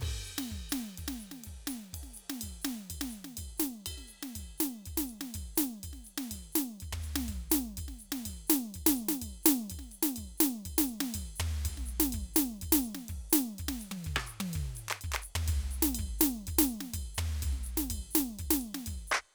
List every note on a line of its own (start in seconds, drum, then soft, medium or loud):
0.01 kick soft
0.01 crash medium
0.07 snare soft
0.24 hi-hat pedal medium
0.29 ride soft
0.38 snare medium
0.51 kick soft
0.51 ride soft
0.69 snare medium
0.69 hi-hat pedal medium
0.98 kick soft
0.98 ride medium
1.08 snare medium
1.19 hi-hat pedal medium
1.32 snare soft
1.44 kick soft
1.44 ride medium
1.67 snare medium
1.67 hi-hat pedal medium
1.93 kick soft
1.93 ride medium
2.03 snare soft
2.14 hi-hat pedal medium
2.18 ride soft
2.30 snare medium
2.41 kick soft
2.41 ride bell medium
2.62 snare medium
2.62 hi-hat pedal medium
2.90 kick soft
2.90 ride bell medium
3.01 snare medium
3.09 hi-hat pedal medium
3.09 ride soft
3.24 snare soft
3.37 kick soft
3.37 ride bell medium
3.58 snare medium
3.58 hi-hat pedal medium
3.86 kick soft
3.86 ride bell loud
3.92 kick soft
3.98 snare soft
4.08 hi-hat pedal medium
4.08 ride soft
4.23 snare medium
4.36 kick soft
4.36 ride bell medium
4.41 kick soft
4.58 snare medium
4.58 hi-hat pedal medium
4.86 kick soft
4.86 ride bell soft
4.97 snare medium
5.07 hi-hat pedal medium
5.07 ride soft
5.21 snare medium
5.34 kick soft
5.34 ride bell medium
5.56 snare medium
5.56 hi-hat pedal medium
5.83 kick soft
5.83 ride bell medium
5.89 kick soft
5.93 snare soft
6.04 hi-hat pedal medium
6.04 ride soft
6.18 snare medium
6.31 kick soft
6.31 ride bell medium
6.53 snare medium
6.53 hi-hat pedal medium
6.80 kick soft
6.80 ride bell soft
6.93 floor tom loud
7.02 hi-hat pedal medium
7.02 ride bell soft
7.16 snare medium
7.28 kick soft
7.28 ride bell medium
7.50 snare loud
7.50 hi-hat pedal medium
7.77 kick soft
7.77 ride bell medium
7.88 snare soft
7.99 hi-hat pedal medium
7.99 ride soft
8.12 snare medium
8.26 kick soft
8.26 ride bell medium
8.47 snare loud
8.47 hi-hat pedal medium
8.74 kick soft
8.74 ride bell medium
8.80 kick soft
8.86 snare loud
8.95 hi-hat pedal medium
8.95 ride soft
9.09 snare medium
9.22 kick soft
9.22 ride bell medium
9.43 snare loud
9.43 hi-hat pedal medium
9.70 kick soft
9.70 ride bell medium
9.79 snare soft
9.91 hi-hat pedal medium
9.91 ride soft
10.03 snare medium
10.16 kick soft
10.16 ride bell medium
10.23 kick soft
10.38 snare loud
10.38 hi-hat pedal medium
10.65 kick soft
10.65 ride bell medium
10.78 snare loud
10.86 hi-hat pedal medium
10.86 ride soft
11.01 snare medium
11.14 kick soft
11.14 ride bell medium
11.36 hi-hat pedal medium
11.40 floor tom loud
11.65 kick soft
11.65 ride bell medium
11.71 kick soft
11.78 snare soft
11.86 hi-hat pedal medium
11.86 ride soft
12.00 snare medium
12.13 kick soft
12.13 ride bell medium
12.20 kick soft
12.34 snare loud
12.34 hi-hat pedal medium
12.56 hi-hat pedal soft
12.62 kick soft
12.62 ride bell medium
12.68 kick soft
12.72 snare loud
12.82 hi-hat pedal medium
12.82 ride soft
12.95 snare medium
13.09 kick soft
13.09 ride medium
13.15 kick soft
13.30 snare loud
13.30 hi-hat pedal medium
13.59 kick soft
13.59 ride bell medium
13.65 kick soft
13.65 snare medium
13.79 hi-hat pedal medium
13.79 ride medium
13.91 high tom medium
14.05 kick soft
14.05 ride bell soft
14.12 kick soft
14.16 cross-stick loud
14.27 hi-hat pedal medium
14.27 ride soft
14.40 high tom loud
14.53 kick soft
14.53 ride bell medium
14.62 kick soft
14.75 hi-hat pedal medium
14.75 ride medium
14.88 percussion loud
15.01 kick soft
15.01 ride bell medium
15.10 kick soft
15.10 percussion loud
15.22 hi-hat pedal medium
15.22 ride soft
15.35 floor tom loud
15.48 kick soft
15.48 ride bell medium
15.55 kick soft
15.71 hi-hat pedal medium
15.71 ride soft
15.83 snare medium
15.93 hi-hat pedal soft
15.93 ride bell medium
15.99 kick soft
16.05 kick soft
16.19 snare loud
16.19 hi-hat pedal medium
16.47 kick soft
16.47 ride bell medium
16.54 kick soft
16.59 snare loud
16.67 hi-hat pedal medium
16.81 snare medium
16.94 kick soft
16.94 ride bell medium
17.00 kick soft
17.15 floor tom loud
17.15 hi-hat pedal medium
17.42 kick soft
17.42 ride bell medium
17.49 kick soft
17.49 snare soft
17.63 hi-hat pedal medium
17.63 ride soft
17.77 snare medium
17.90 kick soft
17.90 ride bell medium
17.96 kick soft
18.11 hi-hat pedal medium
18.15 snare loud
18.32 hi-hat pedal soft
18.39 kick soft
18.39 ride bell medium
18.45 kick soft
18.51 snare medium
18.58 hi-hat pedal medium
18.58 ride soft
18.75 snare medium
18.86 kick soft
18.86 ride bell medium
18.93 kick soft
19.07 hi-hat pedal medium
19.12 percussion loud